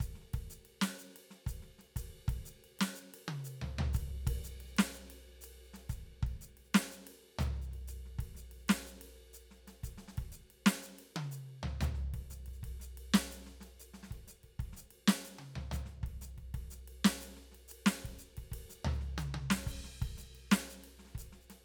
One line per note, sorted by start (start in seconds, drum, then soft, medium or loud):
0.01 kick medium
0.01 hi-hat pedal medium
0.01 ride medium
0.16 snare soft
0.22 snare soft
0.28 snare soft
0.34 kick medium
0.34 ride medium
0.51 hi-hat pedal medium
0.66 ride soft
0.82 snare loud
0.82 ride medium
0.99 hi-hat pedal medium
1.17 ride medium
1.31 snare soft
1.47 kick medium
1.47 hi-hat pedal medium
1.47 ride medium
1.63 snare soft
1.79 snare soft
1.79 ride soft
1.97 kick soft
1.97 hi-hat pedal medium
1.97 ride medium
2.14 snare soft
2.29 kick medium
2.29 ride medium
2.45 snare soft
2.45 hi-hat pedal medium
2.65 ride soft
2.80 snare loud
2.80 ride medium
2.96 hi-hat pedal medium
3.15 ride medium
3.29 high tom loud
3.45 hi-hat pedal medium
3.45 ride medium
3.62 floor tom medium
3.79 floor tom loud
3.94 kick medium
3.94 hi-hat pedal medium
3.94 ride medium
4.28 kick medium
4.28 ride loud
4.44 snare soft
4.44 hi-hat pedal medium
4.61 ride soft
4.68 hi-hat pedal soft
4.78 snare loud
4.78 ride medium
4.95 hi-hat pedal medium
5.11 ride medium
5.28 snare soft
5.42 hi-hat pedal medium
5.42 ride medium
5.57 snare soft
5.65 hi-hat pedal soft
5.74 snare soft
5.74 ride soft
5.90 kick soft
5.90 hi-hat pedal medium
5.90 ride soft
6.12 snare soft
6.23 kick medium
6.23 ride soft
6.42 snare soft
6.42 hi-hat pedal medium
6.58 ride soft
6.65 hi-hat pedal soft
6.75 snare loud
6.75 ride soft
6.92 hi-hat pedal medium
7.08 ride medium
7.23 snare soft
7.29 snare soft
7.40 floor tom loud
7.40 hi-hat pedal medium
7.54 snare soft
7.62 hi-hat pedal soft
7.72 snare soft
7.72 ride soft
7.88 hi-hat pedal medium
7.88 ride medium
8.06 snare soft
8.19 kick medium
8.19 ride medium
8.35 snare soft
8.35 hi-hat pedal medium
8.40 snare soft
8.52 ride soft
8.60 hi-hat pedal soft
8.69 snare loud
8.69 ride medium
8.87 hi-hat pedal medium
9.02 ride medium
9.16 snare soft
9.34 hi-hat pedal medium
9.34 ride soft
9.52 snare soft
9.52 hi-hat pedal soft
9.68 snare soft
9.68 ride soft
9.84 kick soft
9.84 hi-hat pedal medium
9.84 ride soft
9.98 snare soft
10.09 snare soft
10.18 kick medium
10.18 ride medium
10.33 snare soft
10.33 hi-hat pedal medium
10.51 ride soft
10.67 snare loud
10.83 hi-hat pedal medium
11.00 ride medium
11.17 high tom loud
11.32 hi-hat pedal medium
11.32 ride soft
11.49 snare soft
11.64 floor tom loud
11.82 floor tom loud
11.82 hi-hat pedal medium
11.95 snare soft
12.14 kick soft
12.14 ride medium
12.31 snare soft
12.31 hi-hat pedal medium
12.47 kick soft
12.47 ride soft
12.54 hi-hat pedal soft
12.64 kick soft
12.64 ride medium
12.80 snare soft
12.80 hi-hat pedal medium
12.98 ride medium
13.15 snare loud
13.32 hi-hat pedal medium
13.32 ride medium
13.47 snare soft
13.61 snare soft
13.61 ride soft
13.80 hi-hat pedal medium
13.80 ride soft
13.94 snare soft
14.04 snare soft
14.12 kick soft
14.12 ride soft
14.28 snare soft
14.28 hi-hat pedal medium
14.44 kick soft
14.44 ride soft
14.60 kick soft
14.60 ride soft
14.73 snare soft
14.73 hi-hat pedal medium
14.91 ride soft
15.08 snare loud
15.25 hi-hat pedal medium
15.25 ride soft
15.39 high tom medium
15.56 floor tom medium
15.72 floor tom loud
15.72 hi-hat pedal medium
15.86 snare soft
16.04 kick soft
16.04 ride soft
16.22 snare soft
16.22 hi-hat pedal medium
16.38 kick soft
16.38 ride soft
16.55 kick soft
16.55 ride medium
16.71 snare soft
16.71 hi-hat pedal medium
16.89 ride soft
17.05 snare loud
17.21 hi-hat pedal medium
17.21 ride medium
17.37 snare soft
17.52 snare soft
17.52 ride soft
17.69 hi-hat pedal medium
17.69 ride medium
17.87 snare loud
18.05 kick soft
18.05 ride medium
18.19 snare soft
18.19 hi-hat pedal medium
18.38 kick soft
18.38 ride soft
18.52 kick soft
18.52 ride medium
18.70 snare soft
18.70 hi-hat pedal medium
18.78 snare soft
18.85 floor tom loud
18.94 hi-hat pedal soft
19.01 snare soft
19.19 hi-hat pedal medium
19.19 high tom loud
19.35 high tom loud
19.51 snare loud
19.67 kick soft
19.67 hi-hat pedal medium
19.67 crash medium
19.85 snare soft
20.02 kick medium
20.02 ride medium
20.18 snare soft
20.18 hi-hat pedal medium
20.36 ride soft
20.52 snare loud
20.52 ride soft
20.70 hi-hat pedal medium
20.85 ride medium
21.00 snare soft
21.05 snare soft
21.08 snare soft
21.16 kick soft
21.16 hi-hat pedal medium
21.16 ride soft
21.33 snare soft
21.42 hi-hat pedal soft
21.51 snare soft
21.51 ride medium